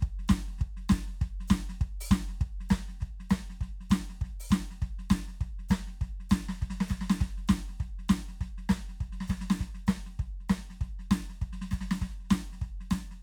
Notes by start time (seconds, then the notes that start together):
0.01 kick, snare
0.19 snare
0.28 kick, snare, hi-hat pedal
0.48 snare
0.59 kick, snare
0.77 snare
0.89 kick, snare, hi-hat pedal
1.08 snare
1.22 kick, snare
1.41 snare
1.48 kick, snare, hi-hat pedal
1.70 snare
1.81 kick, snare
2.01 open hi-hat
2.09 kick, snare, hi-hat pedal
2.29 snare
2.41 kick, snare
2.61 snare
2.70 kick, hi-hat pedal
2.89 snare
3.01 kick, snare
3.20 snare
3.30 kick, snare, hi-hat pedal
3.50 snare
3.61 kick, snare
3.81 snare
3.90 kick, snare, hi-hat pedal
4.10 snare
4.22 kick, snare
4.40 open hi-hat
4.50 kick, snare, hi-hat pedal
4.71 snare
4.82 kick, snare
4.99 snare
5.10 kick, snare, hi-hat pedal
5.28 snare
5.41 kick, snare
5.59 snare
5.69 kick, snare, hi-hat pedal
5.88 snare
6.02 kick, snare
6.20 snare
6.30 kick, snare, hi-hat pedal
6.49 snare
6.62 kick, snare
6.71 snare
6.81 snare
6.88 kick, snare, hi-hat pedal
7.01 snare
7.10 snare
7.21 kick, snare
7.38 snare
7.48 kick, snare, hi-hat pedal
7.69 snare
7.80 kick, snare
7.99 snare
8.09 kick, snare, hi-hat pedal
8.29 snare
8.41 kick, snare
8.58 snare
8.69 kick, snare, hi-hat pedal
8.89 snare
9.01 kick, snare
9.13 snare
9.21 snare
9.28 kick, snare, hi-hat pedal
9.41 snare
9.51 snare
9.61 kick, snare
9.75 snare
9.87 kick, snare, hi-hat pedal
10.06 snare
10.20 kick, snare
10.40 snare
10.49 kick, snare, hi-hat pedal
10.70 snare
10.81 kick, snare
11.00 snare
11.11 kick, snare, hi-hat pedal
11.30 snare
11.42 kick, snare
11.53 snare
11.62 snare
11.71 kick, snare, hi-hat pedal
11.81 snare
11.91 snare
12.02 kick, snare
12.20 snare
12.25 snare
12.30 kick, snare, hi-hat pedal
12.53 snare
12.62 kick, snare
12.81 snare
12.91 kick, snare, hi-hat pedal
13.11 snare